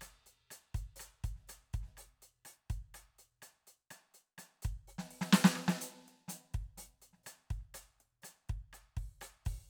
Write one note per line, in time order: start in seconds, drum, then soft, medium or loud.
0.01 closed hi-hat medium
0.01 cross-stick soft
0.01 snare soft
0.01 hi-hat pedal medium
0.26 closed hi-hat soft
0.51 closed hi-hat medium
0.51 cross-stick soft
0.75 closed hi-hat soft
0.75 kick soft
0.96 cross-stick soft
0.96 hi-hat pedal medium
1.00 closed hi-hat medium
1.24 closed hi-hat soft
1.24 kick soft
1.33 snare soft
1.36 snare soft
1.48 closed hi-hat medium
1.48 cross-stick soft
1.48 hi-hat pedal soft
1.73 closed hi-hat soft
1.73 kick soft
1.80 snare soft
1.83 snare soft
1.97 open hi-hat medium
1.97 cross-stick soft
1.97 hi-hat pedal soft
2.22 closed hi-hat soft
2.45 open hi-hat medium
2.45 cross-stick soft
2.70 closed hi-hat soft
2.70 kick soft
2.94 open hi-hat medium
2.94 cross-stick soft
3.19 closed hi-hat soft
3.42 closed hi-hat medium
3.42 cross-stick soft
3.67 closed hi-hat soft
3.90 closed hi-hat medium
3.90 cross-stick soft
3.90 snare soft
4.14 closed hi-hat soft
4.38 closed hi-hat medium
4.38 cross-stick soft
4.38 snare soft
4.62 open hi-hat medium
4.62 kick soft
4.88 open hi-hat soft
4.88 hi-hat pedal soft
4.98 snare soft
5.11 open hi-hat soft
5.21 snare medium
5.33 snare loud
5.44 snare loud
5.56 cross-stick medium
5.68 snare medium
5.68 hi-hat pedal soft
5.81 closed hi-hat loud
6.08 closed hi-hat soft
6.28 closed hi-hat loud
6.28 snare soft
6.54 kick soft
6.54 closed hi-hat soft
6.60 snare soft
6.78 open hi-hat medium
6.78 snare soft
6.78 hi-hat pedal soft
7.02 closed hi-hat soft
7.13 snare soft
7.23 closed hi-hat medium
7.23 cross-stick soft
7.23 snare soft
7.23 hi-hat pedal soft
7.51 open hi-hat soft
7.51 kick soft
7.59 snare soft
7.74 open hi-hat medium
7.74 cross-stick soft
7.74 hi-hat pedal medium
8.00 closed hi-hat soft
8.22 closed hi-hat medium
8.22 cross-stick soft
8.22 snare soft
8.22 hi-hat pedal soft
8.49 kick soft
8.49 closed hi-hat soft
8.73 open hi-hat medium
8.73 cross-stick soft
8.73 hi-hat pedal soft
8.97 kick soft
8.97 open hi-hat soft
9.21 open hi-hat medium
9.21 cross-stick soft
9.21 hi-hat pedal medium
9.45 open hi-hat medium
9.45 kick soft
9.45 snare soft
9.52 kick soft